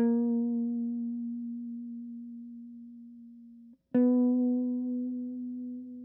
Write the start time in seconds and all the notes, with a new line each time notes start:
0.00 A#3
3.95 B3